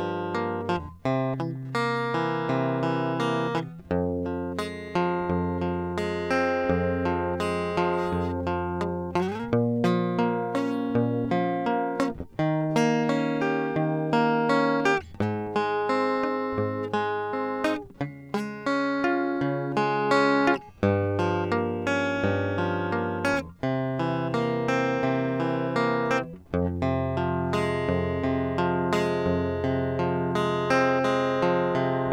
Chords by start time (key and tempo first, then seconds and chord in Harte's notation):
F minor, 85 BPM
0.00 G:min7(*5)
1.07 C:7(*5)
3.89 F:min
9.54 A#:min
12.36 D#:7
15.19 G#:maj(*5)
18.01 C#:maj
20.83 G:hdim7
23.66 C:7(*5)
26.48 F:min